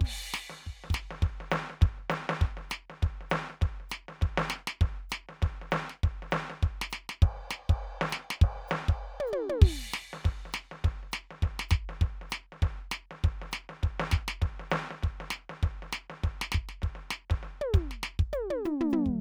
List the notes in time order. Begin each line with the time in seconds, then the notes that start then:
0.01 kick, crash
0.34 snare, hi-hat pedal
0.50 snare
0.67 kick
0.84 snare
0.90 kick, hi-hat pedal
0.94 snare
1.11 snare
1.22 kick, snare
1.40 snare
1.51 snare, hi-hat pedal
1.70 snare
1.81 kick, snare
1.98 snare
2.10 snare, hi-hat pedal
2.29 snare
2.41 kick, snare
2.57 snare
2.70 snare, hi-hat pedal
2.90 snare
3.02 kick, snare
3.21 snare
3.30 snare, hi-hat pedal
3.50 snare
3.62 kick, snare
3.80 snare
3.89 snare, hi-hat pedal
4.08 snare
4.21 kick, snare
4.38 snare
4.49 snare, hi-hat pedal
4.67 snare
4.81 kick, snare
5.09 snare, hi-hat pedal
5.29 snare
5.42 kick, snare
5.62 snare
5.71 snare, hi-hat pedal
5.90 snare
6.03 kick, snare
6.22 snare
6.31 hi-hat pedal
6.50 snare
6.63 kick, snare
6.82 snare
6.90 snare, hi-hat pedal
7.09 snare
7.22 kick, crash
7.50 snare, hi-hat pedal
7.69 kick, crash
8.01 snare
8.09 snare, hi-hat pedal
8.30 snare
8.42 kick, crash
8.68 snare, hi-hat pedal
8.89 kick, crash
9.20 high tom
9.27 hi-hat pedal
9.33 high tom
9.49 high tom
9.62 kick, crash
9.92 snare, hi-hat pedal
10.13 snare
10.25 kick, snare
10.46 snare
10.53 snare, hi-hat pedal
10.71 snare
10.84 kick, snare
11.03 snare
11.12 snare, hi-hat pedal
11.31 snare
11.43 kick, snare
11.59 snare
11.69 kick, snare, hi-hat pedal
11.89 snare
12.01 kick, snare
12.21 snare
12.30 snare, hi-hat pedal
12.52 snare
12.62 kick, snare
12.91 snare, hi-hat pedal
13.11 snare
13.24 kick, snare
13.42 snare
13.51 snare, hi-hat pedal
13.69 snare
13.83 kick, snare
14.00 snare
14.11 kick, snare, hi-hat pedal
14.28 snare
14.42 kick, snare
14.60 snare
14.71 snare, hi-hat pedal
14.91 snare
15.03 kick, snare
15.20 snare
15.31 snare, hi-hat pedal
15.50 snare
15.63 kick, snare
15.82 snare
15.92 snare, hi-hat pedal
16.10 snare
16.24 kick, snare
16.41 snare
16.51 kick, snare, hi-hat pedal
16.69 snare
16.82 kick, snare
16.95 snare
17.11 snare, hi-hat pedal
17.30 kick, snare
17.43 snare
17.61 high tom
17.74 kick, snare, hi-hat pedal
17.91 snare
18.03 snare
18.19 kick
18.33 hi-hat pedal, high tom
18.50 high tom
18.65 floor tom, hi-hat pedal
18.80 floor tom
18.90 floor tom, hi-hat pedal
19.06 kick